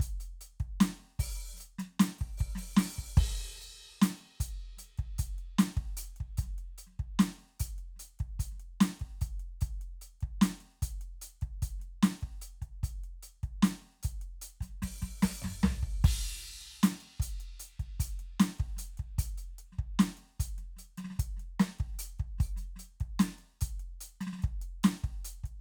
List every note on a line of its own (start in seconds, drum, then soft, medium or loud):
0.01 closed hi-hat medium
0.01 kick medium
0.01 snare soft
0.21 closed hi-hat medium
0.42 closed hi-hat medium
0.61 kick medium
0.61 closed hi-hat soft
0.81 closed hi-hat loud
0.81 snare loud
1.20 open hi-hat loud
1.20 kick medium
1.40 open hi-hat soft
1.54 snare soft
1.57 snare soft
1.57 hi-hat pedal medium
1.61 closed hi-hat medium
1.80 snare medium
1.80 closed hi-hat medium
2.01 closed hi-hat loud
2.01 snare loud
2.19 kick medium
2.19 open hi-hat medium
2.39 open hi-hat medium
2.39 kick medium
2.56 open hi-hat medium
2.56 snare medium
2.78 open hi-hat loud
2.78 snare loud
2.99 kick soft
3.18 kick loud
3.18 crash loud
3.58 hi-hat pedal soft
3.62 closed hi-hat medium
4.03 closed hi-hat loud
4.03 snare loud
4.19 closed hi-hat soft
4.41 closed hi-hat loud
4.41 kick medium
4.61 closed hi-hat soft
4.78 closed hi-hat medium
4.78 snare soft
4.99 kick medium
4.99 closed hi-hat soft
5.19 closed hi-hat loud
5.19 kick medium
5.39 closed hi-hat soft
5.60 closed hi-hat loud
5.60 snare loud
5.78 kick medium
5.78 closed hi-hat soft
5.98 closed hi-hat loud
6.17 closed hi-hat soft
6.21 kick soft
6.38 closed hi-hat medium
6.38 kick medium
6.43 snare soft
6.59 closed hi-hat soft
6.79 closed hi-hat medium
6.88 snare soft
6.93 snare soft
7.00 kick soft
7.00 closed hi-hat soft
7.20 closed hi-hat loud
7.20 snare loud
7.40 closed hi-hat soft
7.61 closed hi-hat loud
7.61 kick medium
7.79 closed hi-hat soft
7.97 closed hi-hat medium
7.97 snare soft
8.20 kick soft
8.20 closed hi-hat soft
8.40 closed hi-hat loud
8.40 kick medium
8.52 snare soft
8.56 snare soft
8.61 closed hi-hat soft
8.82 closed hi-hat loud
8.82 snare loud
9.01 kick soft
9.01 closed hi-hat soft
9.22 closed hi-hat medium
9.22 kick medium
9.41 closed hi-hat soft
9.62 closed hi-hat medium
9.62 kick medium
9.82 closed hi-hat soft
10.02 closed hi-hat medium
10.22 kick medium
10.22 closed hi-hat soft
10.42 closed hi-hat loud
10.42 snare loud
10.61 closed hi-hat soft
10.83 closed hi-hat loud
10.83 kick medium
11.02 closed hi-hat soft
11.23 closed hi-hat loud
11.42 kick soft
11.42 closed hi-hat soft
11.63 closed hi-hat medium
11.63 kick medium
11.80 snare soft
11.80 closed hi-hat soft
12.04 closed hi-hat loud
12.04 snare loud
12.22 kick medium
12.22 closed hi-hat soft
12.43 closed hi-hat medium
12.63 kick soft
12.63 closed hi-hat soft
12.84 closed hi-hat medium
12.84 kick medium
13.05 closed hi-hat soft
13.24 closed hi-hat medium
13.44 kick soft
13.44 closed hi-hat soft
13.64 closed hi-hat loud
13.64 snare loud
13.84 closed hi-hat soft
14.00 closed hi-hat loud
14.00 snare soft
14.06 kick medium
14.22 closed hi-hat soft
14.43 closed hi-hat loud
14.62 closed hi-hat medium
14.62 kick soft
14.62 snare soft
14.83 open hi-hat loud
14.83 kick soft
14.83 snare medium
15.03 kick soft
15.03 snare soft
15.03 open hi-hat medium
15.23 open hi-hat loud
15.23 kick soft
15.23 snare loud
15.43 kick soft
15.43 snare medium
15.43 mid tom medium
15.64 snare loud
15.64 floor tom loud
15.84 kick medium
16.05 kick loud
16.05 crash loud
16.45 closed hi-hat soft
16.62 closed hi-hat soft
16.84 closed hi-hat loud
16.84 snare loud
17.01 closed hi-hat soft
17.21 closed hi-hat loud
17.21 kick medium
17.41 closed hi-hat medium
17.61 closed hi-hat loud
17.80 kick soft
17.80 snare soft
17.80 closed hi-hat soft
18.01 closed hi-hat loud
18.01 kick medium
18.20 snare soft
18.20 closed hi-hat soft
18.41 closed hi-hat loud
18.41 snare loud
18.60 kick medium
18.60 closed hi-hat soft
18.77 closed hi-hat loud
18.77 snare soft
18.98 kick soft
18.98 closed hi-hat soft
19.19 closed hi-hat loud
19.19 kick medium
19.39 closed hi-hat medium
19.59 closed hi-hat medium
19.73 snare soft
19.80 kick medium
20.00 closed hi-hat medium
20.00 snare loud
20.18 closed hi-hat soft
20.41 closed hi-hat loud
20.41 kick medium
20.59 snare soft
20.59 closed hi-hat soft
20.77 closed hi-hat medium
20.77 snare soft
20.99 snare medium
20.99 closed hi-hat medium
21.05 snare soft
21.11 snare soft
21.17 kick medium
21.17 snare soft
21.17 closed hi-hat loud
21.38 snare soft
21.38 closed hi-hat soft
21.61 closed hi-hat medium
21.61 snare loud
21.80 kick medium
21.80 closed hi-hat soft
21.95 snare soft
22.00 closed hi-hat loud
22.20 kick medium
22.20 closed hi-hat soft
22.39 open hi-hat medium
22.39 kick medium
22.39 snare soft
22.57 closed hi-hat soft
22.57 snare soft
22.77 closed hi-hat medium
22.77 snare soft
23.01 kick medium
23.01 closed hi-hat soft
23.20 closed hi-hat loud
23.20 snare loud
23.39 closed hi-hat soft
23.62 closed hi-hat loud
23.62 kick medium
23.81 closed hi-hat soft
24.02 closed hi-hat loud
24.22 snare medium
24.22 closed hi-hat medium
24.28 snare medium
24.34 snare medium
24.40 snare soft
24.40 closed hi-hat soft
24.45 kick medium
24.62 closed hi-hat medium
24.84 closed hi-hat loud
24.84 snare loud
25.05 kick medium
25.05 closed hi-hat soft
25.26 closed hi-hat loud
25.45 kick soft
25.45 closed hi-hat soft